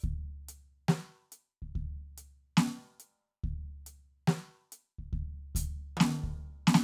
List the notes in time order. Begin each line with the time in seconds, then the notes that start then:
0.01 kick, hi-hat pedal
0.07 crash
0.49 closed hi-hat
0.89 snare
1.32 closed hi-hat
1.62 kick
1.76 kick, crash, ride
2.18 closed hi-hat
2.57 snare
3.00 closed hi-hat
3.44 kick, snare, crash, ride
3.87 closed hi-hat
4.28 snare
4.73 closed hi-hat
4.99 kick
5.13 kick, crash, ride
5.55 closed hi-hat, kick
5.97 snare, high tom
6.24 kick
6.68 snare
6.75 snare